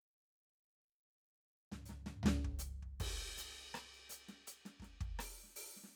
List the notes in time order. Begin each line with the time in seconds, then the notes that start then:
1.72 snare, floor tom
1.85 snare, hi-hat pedal
1.90 floor tom
2.06 snare, floor tom
2.23 snare, floor tom
2.44 kick
2.59 hi-hat pedal
2.82 kick
3.00 kick, crash, ride
3.38 hi-hat pedal
3.55 closed hi-hat
3.74 cross-stick, closed hi-hat
3.77 cross-stick
3.93 closed hi-hat
4.09 closed hi-hat, hi-hat pedal
4.28 snare, closed hi-hat
4.47 closed hi-hat, hi-hat pedal
4.65 snare, closed hi-hat
4.80 kick, snare
4.84 closed hi-hat
5.01 kick, closed hi-hat
5.19 open hi-hat, cross-stick
5.44 snare
5.46 snare
5.56 open hi-hat
5.76 snare
5.84 snare
5.88 snare